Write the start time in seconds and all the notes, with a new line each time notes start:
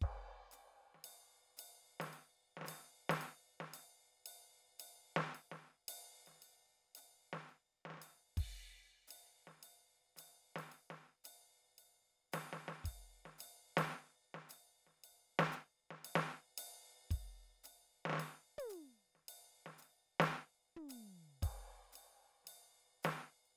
0.02 kick, crash
0.52 hi-hat pedal, ride
0.95 snare
1.05 ride
1.57 hi-hat pedal, ride
2.01 snare, ride
2.07 snare
2.14 ride
2.58 snare
2.62 snare
2.65 snare, hi-hat pedal
2.68 snare, ride
2.72 snare
3.10 snare, ride
3.22 ride
3.61 snare
3.74 hi-hat pedal, ride
4.26 ride
4.80 hi-hat pedal, ride
5.17 snare
5.35 ride
5.52 snare
5.89 hi-hat pedal, ride
6.27 snare, ride
6.33 snare
6.43 ride
6.96 hi-hat pedal, ride
7.34 snare
7.50 ride
7.86 snare
7.91 snare
7.95 snare
7.98 snare
8.02 hi-hat pedal, ride
8.38 kick, ride, crash
8.53 ride
9.08 hi-hat pedal, ride
9.48 snare
9.64 ride
10.17 snare, hi-hat pedal, ride
10.56 snare, ride
10.72 ride
10.91 snare
11.25 hi-hat pedal, ride
11.79 ride
12.33 snare, hi-hat pedal, ride
12.53 snare
12.69 snare
12.85 kick, ride
13.26 snare
13.32 snare
13.39 hi-hat pedal, ride
13.78 snare, ride
13.92 snare
14.35 snare
14.50 hi-hat pedal, ride
14.87 snare
15.04 ride
15.40 snare, ride
15.53 hi-hat pedal, ride
15.91 snare
16.05 ride
16.16 snare
16.58 hi-hat pedal, ride
17.03 crash
17.11 kick, ride
17.64 hi-hat pedal, ride
18.06 snare
18.10 snare
18.14 snare
18.16 snare
18.19 snare, ride
18.58 high tom, ride
18.70 hi-hat pedal, ride
19.16 snare
19.29 ride
19.67 snare
19.79 hi-hat pedal
19.83 ride
20.21 snare, ride
20.76 floor tom
20.90 hi-hat pedal, ride
21.43 kick, ride, crash
21.93 hi-hat pedal, ride
22.45 snare, ride
23.03 snare, hi-hat pedal, ride
23.46 ride